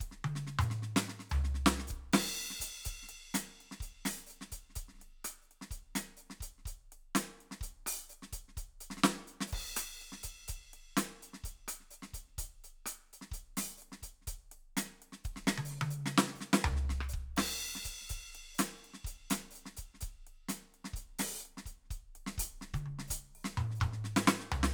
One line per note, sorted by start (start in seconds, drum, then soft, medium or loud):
0.01 kick soft
0.01 closed hi-hat medium
0.09 kick soft
0.09 snare soft
0.23 kick soft
0.23 high tom loud
0.36 snare soft
0.47 snare soft
0.59 hi-hat pedal medium
0.59 mid tom loud
0.71 snare soft
0.83 snare soft
0.97 snare loud
0.97 hi-hat pedal medium
1.09 snare soft
1.20 snare soft
1.30 floor tom loud
1.30 hi-hat pedal soft
1.45 snare soft
1.55 snare soft
1.67 snare loud
1.79 snare soft
1.88 kick soft
1.88 hi-hat pedal medium
1.97 kick soft
2.13 snare loud
2.13 crash loud
2.39 closed hi-hat soft
2.51 snare soft
2.61 closed hi-hat loud
2.61 kick soft
2.86 closed hi-hat medium
2.86 kick soft
3.03 snare soft
3.09 closed hi-hat medium
3.35 closed hi-hat loud
3.35 snare loud
3.61 closed hi-hat soft
3.72 snare soft
3.81 closed hi-hat medium
3.81 kick soft
3.88 kick soft
4.06 open hi-hat loud
4.06 snare medium
4.17 snare soft
4.27 closed hi-hat soft
4.27 hi-hat pedal medium
4.42 snare soft
4.52 closed hi-hat medium
4.52 kick soft
4.70 snare soft
4.76 closed hi-hat medium
4.76 kick soft
4.89 snare soft
4.95 snare soft
4.99 snare soft
4.99 closed hi-hat soft
5.25 closed hi-hat loud
5.25 cross-stick medium
5.42 hi-hat pedal soft
5.52 closed hi-hat soft
5.62 snare soft
5.71 closed hi-hat medium
5.71 kick soft
5.96 closed hi-hat loud
5.96 snare medium
6.17 closed hi-hat soft
6.17 hi-hat pedal soft
6.31 snare soft
6.40 closed hi-hat medium
6.40 kick soft
6.40 snare soft
6.59 snare soft
6.65 closed hi-hat medium
6.65 kick soft
6.65 snare soft
6.72 kick soft
6.93 closed hi-hat soft
7.16 closed hi-hat loud
7.16 snare loud
7.41 closed hi-hat soft
7.52 snare soft
7.61 closed hi-hat medium
7.61 kick soft
7.69 kick soft
7.87 open hi-hat loud
7.87 cross-stick medium
8.10 closed hi-hat soft
8.10 hi-hat pedal medium
8.23 snare soft
8.33 closed hi-hat medium
8.33 kick soft
8.49 snare soft
8.56 closed hi-hat medium
8.56 kick soft
8.56 snare soft
8.59 snare soft
8.81 closed hi-hat medium
8.91 snare medium
8.98 snare soft
9.04 snare loud
9.19 snare soft
9.28 open hi-hat soft
9.41 snare medium
9.48 hi-hat pedal medium
9.53 kick soft
9.53 crash medium
9.60 kick soft
9.62 kick soft
9.77 closed hi-hat loud
9.77 cross-stick medium
10.02 closed hi-hat soft
10.13 snare soft
10.24 closed hi-hat medium
10.24 kick soft
10.42 snare soft
10.49 closed hi-hat medium
10.49 kick soft
10.74 closed hi-hat soft
10.97 closed hi-hat loud
10.97 snare loud
11.23 closed hi-hat soft
11.34 snare soft
11.44 closed hi-hat medium
11.44 kick soft
11.69 closed hi-hat loud
11.69 cross-stick medium
11.81 snare soft
11.91 closed hi-hat soft
11.91 hi-hat pedal medium
12.03 snare soft
12.14 closed hi-hat medium
12.14 kick soft
12.28 snare soft
12.39 closed hi-hat medium
12.39 kick soft
12.44 kick soft
12.64 closed hi-hat soft
12.86 closed hi-hat loud
12.86 cross-stick medium
13.14 closed hi-hat soft
13.22 snare soft
13.32 closed hi-hat medium
13.32 kick soft
13.32 snare soft
13.58 open hi-hat loud
13.58 snare medium
13.78 hi-hat pedal soft
13.83 closed hi-hat soft
13.93 snare soft
14.03 closed hi-hat medium
14.03 kick soft
14.22 snare soft
14.28 closed hi-hat medium
14.28 kick soft
14.34 kick soft
14.52 closed hi-hat soft
14.77 closed hi-hat loud
14.77 snare medium
14.86 snare soft
15.02 closed hi-hat soft
15.13 snare soft
15.25 kick soft
15.25 closed hi-hat soft
15.25 hi-hat pedal soft
15.34 kick soft
15.34 snare soft
15.46 kick soft
15.46 snare loud
15.58 high tom loud
15.66 hi-hat pedal medium
15.72 snare soft
15.82 high tom loud
15.91 hi-hat pedal medium
16.06 snare medium
16.18 snare loud
16.28 snare soft
16.35 kick soft
16.35 hi-hat pedal soft
16.41 snare medium
16.54 snare loud
16.54 hi-hat pedal soft
16.65 kick soft
16.65 floor tom loud
16.77 snare soft
16.90 kick soft
16.90 snare medium
17.01 cross-stick medium
17.10 hi-hat pedal medium
17.14 kick soft
17.21 kick soft
17.37 snare medium
17.37 crash loud
17.54 hi-hat pedal soft
17.62 closed hi-hat soft
17.76 snare soft
17.85 closed hi-hat medium
17.85 kick soft
18.02 snare soft
18.10 closed hi-hat medium
18.10 kick soft
18.17 kick soft
18.35 closed hi-hat soft
18.55 hi-hat pedal soft
18.59 closed hi-hat loud
18.59 snare medium
18.77 hi-hat pedal soft
18.85 closed hi-hat soft
18.94 snare soft
19.05 closed hi-hat medium
19.05 kick soft
19.31 closed hi-hat loud
19.31 snare loud
19.51 hi-hat pedal soft
19.56 closed hi-hat soft
19.66 snare soft
19.75 closed hi-hat medium
19.75 kick soft
19.75 snare soft
19.95 snare soft
20.01 closed hi-hat medium
20.01 kick soft
20.01 snare soft
20.07 kick soft
20.07 snare soft
20.09 snare soft
20.27 closed hi-hat soft
20.49 closed hi-hat medium
20.49 snare medium
20.75 closed hi-hat soft
20.85 snare medium
20.94 closed hi-hat medium
20.94 kick soft
21.00 kick soft
21.19 open hi-hat loud
21.19 snare medium
21.40 hi-hat pedal soft
21.46 closed hi-hat soft
21.58 snare soft
21.66 closed hi-hat medium
21.66 kick soft
21.85 snare soft
21.91 closed hi-hat soft
21.91 kick soft
22.16 closed hi-hat soft
22.27 snare medium
22.38 closed hi-hat loud
22.38 kick soft
22.45 kick soft
22.62 snare soft
22.74 kick soft
22.74 hi-hat pedal soft
22.74 high tom loud
22.81 kick soft
22.86 high tom soft
22.99 snare medium
23.08 closed hi-hat loud
23.08 kick soft
23.08 hi-hat pedal soft
23.36 open hi-hat soft
23.45 snare medium
23.54 kick soft
23.54 mid tom loud
23.71 snare soft
23.76 hi-hat pedal soft
23.81 kick soft
23.81 mid tom loud
23.93 snare soft
24.05 snare soft
24.17 snare loud
24.25 kick soft
24.25 snare loud
24.41 snare soft
24.52 floor tom loud
24.64 snare medium